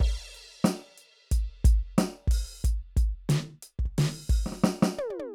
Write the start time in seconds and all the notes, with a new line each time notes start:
0.01 kick, hi-hat pedal, crash
0.35 closed hi-hat
0.65 closed hi-hat, snare
0.98 closed hi-hat
1.32 closed hi-hat, kick
1.65 closed hi-hat, kick
1.99 closed hi-hat, snare
2.28 open hi-hat, kick
2.63 closed hi-hat, kick, hi-hat pedal
2.97 closed hi-hat, kick
3.30 closed hi-hat, snare
3.63 closed hi-hat
3.80 kick
3.86 kick
3.99 open hi-hat, snare
4.30 open hi-hat, kick
4.47 snare
4.53 snare
4.64 snare
4.83 snare
4.99 high tom
5.11 high tom
5.20 high tom